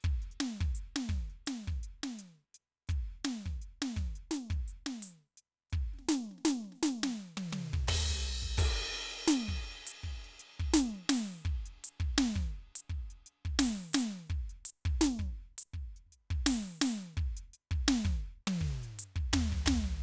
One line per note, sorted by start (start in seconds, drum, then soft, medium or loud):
0.01 kick medium
0.01 hi-hat pedal medium
0.22 closed hi-hat soft
0.31 closed hi-hat medium
0.40 snare medium
0.61 kick medium
0.75 closed hi-hat medium
0.96 snare medium
1.09 kick soft
1.09 closed hi-hat soft
1.30 closed hi-hat soft
1.47 closed hi-hat medium
1.47 snare medium
1.67 kick soft
1.83 closed hi-hat medium
2.03 snare medium
2.19 open hi-hat loud
2.54 open hi-hat medium
2.87 kick medium
2.87 closed hi-hat medium
2.87 hi-hat pedal soft
3.24 snare medium
3.24 closed hi-hat medium
3.46 kick soft
3.62 closed hi-hat medium
3.82 snare medium
3.96 kick soft
3.96 closed hi-hat medium
4.15 closed hi-hat medium
4.31 snare medium
4.50 kick soft
4.50 closed hi-hat medium
4.68 closed hi-hat medium
4.86 snare medium
5.02 open hi-hat loud
5.37 open hi-hat medium
5.70 kick medium
5.70 hi-hat pedal soft
5.93 snare soft
5.99 snare soft
6.09 snare loud
6.31 snare soft
6.38 snare soft
6.45 snare loud
6.64 snare soft
6.72 snare soft
6.72 hi-hat pedal soft
6.83 snare medium
7.03 snare medium
7.15 hi-hat pedal medium
7.37 high tom medium
7.53 hi-hat pedal medium
7.53 high tom medium
7.73 kick medium
7.87 floor tom loud
7.87 crash loud
8.09 kick soft
8.22 hi-hat pedal medium
8.42 kick soft
8.57 open hi-hat loud
8.57 kick medium
8.57 ride loud
9.27 snare loud
9.27 hi-hat pedal soft
9.48 kick soft
9.87 closed hi-hat loud
10.03 kick soft
10.24 closed hi-hat medium
10.39 closed hi-hat loud
10.60 kick soft
10.74 open hi-hat loud
10.74 snare loud
11.09 open hi-hat loud
11.09 snare loud
11.41 hi-hat pedal soft
11.45 kick medium
11.66 closed hi-hat medium
11.84 closed hi-hat loud
12.00 kick medium
12.18 snare loud
12.36 kick soft
12.75 closed hi-hat loud
12.90 kick soft
13.10 closed hi-hat medium
13.26 closed hi-hat loud
13.45 kick soft
13.59 open hi-hat loud
13.59 snare loud
13.93 open hi-hat loud
13.93 snare loud
14.27 kick soft
14.27 hi-hat pedal soft
14.49 closed hi-hat medium
14.65 closed hi-hat loud
14.85 kick medium
15.01 snare loud
15.19 kick soft
15.58 closed hi-hat loud
15.74 kick soft
15.96 closed hi-hat soft
16.07 kick soft
16.12 closed hi-hat medium
16.30 kick medium
16.46 open hi-hat loud
16.46 snare loud
16.81 open hi-hat loud
16.81 snare loud
17.13 kick medium
17.13 hi-hat pedal soft
17.37 closed hi-hat loud
17.53 closed hi-hat medium
17.71 kick medium
17.88 snare loud
18.05 kick medium
18.47 high tom loud
18.61 kick soft
18.83 closed hi-hat medium
18.99 closed hi-hat loud
19.16 kick soft
19.33 snare loud
19.33 floor tom loud
19.52 kick soft
19.66 snare loud
19.66 floor tom loud